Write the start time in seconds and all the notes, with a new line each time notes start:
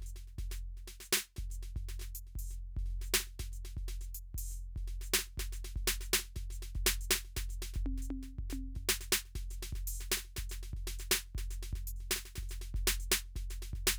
0.01 snare
0.06 hi-hat pedal
0.16 snare
0.27 snare
0.38 kick, snare
0.50 snare, hi-hat pedal
0.77 snare
0.88 snare
0.99 snare, hi-hat pedal
1.13 snare
1.17 snare
1.25 snare
1.36 kick, snare
1.50 snare, hi-hat pedal
1.63 snare
1.76 kick, snare
1.89 snare
1.99 snare, hi-hat pedal
2.01 snare
2.15 closed hi-hat
2.27 snare
2.36 open hi-hat, kick
2.51 snare, hi-hat pedal
2.56 closed hi-hat
2.77 kick, snare
2.86 snare
2.90 snare
3.01 snare, hi-hat pedal
3.14 snare
3.20 snare
3.27 snare
3.39 kick, snare
3.52 snare, hi-hat pedal
3.65 snare
3.77 kick, snare
3.88 snare
3.99 snare, hi-hat pedal
4.01 snare
4.14 closed hi-hat
4.34 open hi-hat, kick
4.51 snare, hi-hat pedal
4.55 closed hi-hat
4.76 kick, snare
5.01 snare, hi-hat pedal
5.14 snare
5.19 snare
5.27 snare
5.38 kick, snare
5.52 snare, hi-hat pedal
5.64 snare
5.76 kick, snare
5.87 snare
6.01 snare, hi-hat pedal
6.13 snare
6.19 snare
6.24 snare
6.36 kick, snare
6.50 snare, hi-hat pedal
6.62 snare
6.75 kick, snare
6.86 snare
6.99 snare, hi-hat pedal
7.11 snare
7.15 snare
7.25 snare
7.37 kick, snare
7.49 snare, hi-hat pedal
7.62 snare
7.74 kick, snare
7.86 high tom
7.98 snare
8.02 hi-hat pedal
8.10 high tom
8.23 snare
8.39 kick
8.50 snare, hi-hat pedal, high tom
8.75 kick, snare
8.89 snare
9.01 snare, hi-hat pedal
9.12 snare
9.25 snare
9.35 kick, snare
9.43 snare
9.50 snare, hi-hat pedal
9.62 snare
9.73 kick, snare
9.87 open hi-hat
9.96 hi-hat pedal
10.00 snare
10.12 snare
10.17 snare
10.25 snare
10.36 kick, snare
10.49 snare, hi-hat pedal
10.63 snare
10.73 kick, snare
10.87 snare
10.97 snare, hi-hat pedal
10.99 snare
11.11 snare
11.15 snare
11.26 snare
11.35 kick, snare
11.51 snare, hi-hat pedal
11.63 snare
11.73 kick, snare
11.87 open hi-hat
11.96 hi-hat pedal
12.00 snare
12.11 snare
12.16 snare
12.25 snare
12.36 kick, snare
12.43 snare
12.49 snare, closed hi-hat, hi-hat pedal
12.61 snare
12.74 kick, snare
12.87 snare
12.97 snare
12.99 snare, hi-hat pedal
13.12 snare
13.25 snare
13.36 kick, snare
13.50 snare, closed hi-hat, hi-hat pedal
13.62 snare
13.73 kick, snare
13.87 snare